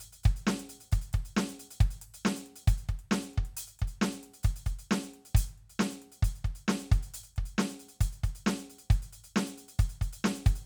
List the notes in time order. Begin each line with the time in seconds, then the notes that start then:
0.01 closed hi-hat
0.13 closed hi-hat
0.24 closed hi-hat, kick
0.37 closed hi-hat
0.48 snare
0.60 closed hi-hat
0.70 closed hi-hat
0.81 closed hi-hat
0.92 closed hi-hat, kick
1.02 closed hi-hat
1.14 kick, closed hi-hat
1.26 closed hi-hat
1.37 snare
1.49 closed hi-hat
1.60 closed hi-hat
1.71 closed hi-hat
1.81 kick, closed hi-hat
1.91 closed hi-hat
2.02 closed hi-hat
2.15 closed hi-hat
2.24 kick, snare
2.37 closed hi-hat
2.47 closed hi-hat
2.56 closed hi-hat
2.68 closed hi-hat, kick
2.78 closed hi-hat
2.89 kick, closed hi-hat
3.00 closed hi-hat
3.12 snare
3.23 closed hi-hat
3.34 closed hi-hat
3.38 kick
3.46 closed hi-hat
3.57 closed hi-hat
3.68 closed hi-hat
3.80 kick, closed hi-hat
3.88 closed hi-hat
4.02 snare
4.13 closed hi-hat
4.24 closed hi-hat
4.34 closed hi-hat
4.44 closed hi-hat, kick
4.57 closed hi-hat
4.67 kick
4.79 closed hi-hat
4.92 snare
5.04 closed hi-hat
5.14 closed hi-hat
5.26 closed hi-hat
5.35 closed hi-hat, kick
5.48 closed hi-hat
5.59 closed hi-hat
5.70 closed hi-hat
5.80 snare
5.91 closed hi-hat
6.03 closed hi-hat
6.13 closed hi-hat
6.23 closed hi-hat, kick
6.36 closed hi-hat
6.45 kick, closed hi-hat
6.56 closed hi-hat
6.69 snare
6.80 closed hi-hat
6.92 closed hi-hat, kick
7.03 closed hi-hat
7.15 closed hi-hat
7.24 closed hi-hat
7.37 kick, closed hi-hat
7.46 closed hi-hat
7.59 snare
7.70 closed hi-hat
7.80 closed hi-hat
7.89 closed hi-hat
8.01 closed hi-hat, kick
8.13 closed hi-hat
8.24 closed hi-hat, kick
8.36 closed hi-hat
8.47 snare
8.59 closed hi-hat
8.70 closed hi-hat
8.79 closed hi-hat
8.91 closed hi-hat, kick
9.03 closed hi-hat
9.13 closed hi-hat
9.25 closed hi-hat
9.37 snare
9.47 closed hi-hat
9.58 closed hi-hat
9.69 closed hi-hat
9.80 closed hi-hat, kick
9.90 closed hi-hat
10.02 closed hi-hat, kick
10.14 closed hi-hat
10.25 snare
10.36 closed hi-hat
10.47 closed hi-hat, kick
10.56 closed hi-hat